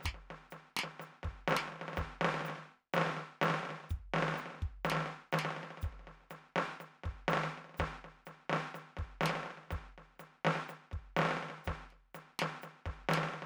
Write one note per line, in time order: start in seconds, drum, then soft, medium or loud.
0.01 snare soft
0.01 hi-hat pedal medium
0.05 kick soft
0.05 snare medium
0.11 kick soft
0.15 snare soft
0.23 snare soft
0.31 snare soft
0.51 snare soft
0.51 hi-hat pedal medium
0.77 snare medium
0.79 snare loud
0.84 snare soft
1.00 snare soft
1.00 hi-hat pedal medium
1.09 snare soft
1.13 snare soft
1.23 kick soft
1.23 snare soft
1.30 kick soft
1.48 snare medium
1.48 hi-hat pedal medium
1.51 snare medium
1.53 snare medium
1.57 snare medium
1.66 snare soft
1.68 snare soft
1.73 snare soft
1.76 snare soft
1.80 snare soft
1.82 snare soft
1.88 snare soft
1.94 snare soft
1.94 hi-hat pedal medium
1.98 kick soft
1.98 snare medium
2.04 kick soft
2.21 snare medium
2.25 snare loud
2.29 snare soft
2.35 snare medium
2.40 snare soft
2.44 snare soft
2.44 hi-hat pedal medium
2.49 snare soft
2.56 snare soft
2.58 snare soft
2.68 snare soft
2.94 snare medium
2.94 hi-hat pedal medium
2.97 snare medium
3.02 snare medium
3.06 snare soft
3.06 snare medium
3.10 snare soft
3.12 snare soft
3.17 snare soft
3.20 snare soft
3.42 snare medium
3.42 hi-hat pedal medium
3.46 snare medium
3.49 snare medium
3.51 snare medium
3.54 snare medium
3.60 snare soft
3.64 snare soft
3.66 snare soft
3.69 snare soft
3.76 snare soft
3.81 snare soft
3.84 snare soft
3.90 kick soft
3.90 hi-hat pedal medium
3.94 kick soft
3.94 snare soft
3.99 kick soft
4.14 snare medium
4.17 snare medium
4.19 snare medium
4.23 snare medium
4.29 snare medium
4.32 snare soft
4.34 snare soft
4.36 snare soft
4.36 hi-hat pedal medium
4.40 snare soft
4.51 snare soft
4.55 snare soft
4.59 kick soft
4.59 snare soft
4.85 snare medium
4.85 hi-hat pedal medium
4.90 snare medium
4.92 snare medium
4.97 snare medium
5.01 snare soft
5.06 snare soft
5.11 snare soft
5.32 snare medium
5.32 hi-hat pedal medium
5.39 snare medium
5.45 snare medium
5.49 snare soft
5.51 snare soft
5.56 snare soft
5.62 snare soft
5.64 snare soft
5.71 snare soft
5.78 snare soft
5.78 hi-hat pedal medium
5.83 kick soft
5.83 snare soft
5.93 snare soft
6.00 snare soft
6.05 snare soft
6.07 snare soft
6.18 snare soft
6.21 snare soft
6.24 snare soft
6.30 snare soft
6.30 hi-hat pedal medium
6.56 snare medium
6.58 snare medium
6.70 snare soft
6.80 snare soft
6.80 hi-hat pedal medium
6.92 snare soft
6.95 snare soft
7.04 kick soft
7.04 snare soft
7.11 kick soft
7.28 snare loud
7.28 hi-hat pedal medium
7.34 snare medium
7.38 snare medium
7.44 snare medium
7.50 snare soft
7.58 snare soft
7.65 snare soft
7.70 snare soft
7.75 snare soft
7.75 hi-hat pedal medium
7.80 kick soft
7.80 snare medium
7.85 kick soft
7.93 snare soft
7.96 snare soft
8.05 snare soft
8.26 snare soft
8.26 hi-hat pedal medium
8.50 snare medium
8.53 snare medium
8.57 snare soft
8.75 snare soft
8.75 hi-hat pedal medium
8.80 snare soft
8.86 snare soft
8.97 kick soft
8.97 snare soft
9.21 snare medium
9.21 hi-hat pedal medium
9.24 snare medium
9.26 snare medium
9.30 snare medium
9.36 snare medium
9.41 snare soft
9.44 snare soft
9.46 snare soft
9.51 snare soft
9.58 snare soft
9.64 snare soft
9.68 snare soft
9.71 kick soft
9.71 snare soft
9.71 hi-hat pedal medium
9.98 snare soft
10.16 snare soft
10.16 hi-hat pedal medium
10.20 snare soft
10.45 snare medium
10.47 snare loud
10.51 snare soft
10.56 snare medium
10.69 snare soft
10.69 hi-hat pedal medium
10.84 snare soft
10.89 snare soft
10.92 kick soft
10.92 snare soft
11.17 snare medium
11.17 hi-hat pedal medium
11.19 snare medium
11.22 snare medium
11.26 snare medium
11.29 snare medium
11.31 snare medium
11.37 snare soft
11.43 snare soft
11.49 snare soft
11.58 snare soft
11.65 kick soft
11.65 snare soft
11.65 hi-hat pedal medium
11.68 snare medium
11.76 snare soft
11.82 snare soft
11.91 snare soft
11.93 snare soft
12.15 snare soft
12.15 hi-hat pedal medium
12.39 snare medium
12.42 snare medium
12.62 snare soft
12.62 hi-hat pedal medium
12.73 snare soft
12.76 snare soft
12.86 kick soft
12.86 snare soft
13.09 snare medium
13.09 hi-hat pedal soft
13.12 snare medium
13.14 snare medium
13.18 snare medium
13.24 snare medium
13.29 snare soft
13.34 snare soft
13.39 snare soft
13.43 snare soft